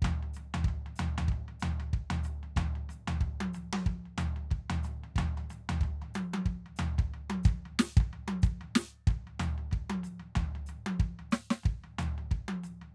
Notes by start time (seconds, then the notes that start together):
0.02 kick, floor tom
0.23 floor tom
0.34 floor tom, hi-hat pedal
0.54 floor tom
0.64 kick
0.68 floor tom
0.86 floor tom
0.96 floor tom, hi-hat pedal
1.18 floor tom
1.28 kick, floor tom
1.48 floor tom
1.60 floor tom, hi-hat pedal
1.80 floor tom
1.93 kick, floor tom
2.10 floor tom
2.23 floor tom, hi-hat pedal
2.43 floor tom
2.56 kick, floor tom
2.75 floor tom
2.89 kick, floor tom, hi-hat pedal
3.08 floor tom
3.20 kick, floor tom
3.40 high tom
3.53 floor tom, hi-hat pedal
3.73 high tom
3.86 kick, floor tom
4.05 floor tom
4.18 floor tom, hi-hat pedal
4.36 floor tom
4.51 kick, floor tom
4.70 floor tom
4.83 floor tom, hi-hat pedal
5.04 floor tom
5.16 kick, floor tom
5.37 floor tom
5.50 floor tom, hi-hat pedal
5.69 floor tom
5.81 kick, floor tom
6.02 floor tom
6.14 hi-hat pedal, high tom
6.34 high tom
6.46 kick, floor tom
6.66 floor tom
6.76 floor tom, hi-hat pedal
6.98 kick, floor tom
7.14 floor tom
7.30 high tom
7.43 kick, hi-hat pedal
7.47 floor tom
7.65 floor tom
7.79 snare
7.97 kick, floor tom
8.13 floor tom
8.28 high tom
8.42 kick, floor tom, hi-hat pedal
8.61 floor tom
8.75 snare
9.07 kick, floor tom
9.27 floor tom
9.40 floor tom, hi-hat pedal
9.58 floor tom
9.71 kick, floor tom
9.90 high tom
10.03 floor tom, hi-hat pedal
10.20 floor tom
10.35 kick, floor tom
10.55 floor tom
10.66 floor tom, hi-hat pedal
10.86 high tom
11.00 kick, floor tom
11.19 kick, floor tom
11.31 snare, hi-hat pedal
11.50 snare
11.63 kick, floor tom
11.84 floor tom
11.99 kick, floor tom, hi-hat pedal
12.18 floor tom
12.31 kick, floor tom
12.48 high tom
12.63 floor tom, hi-hat pedal
12.81 floor tom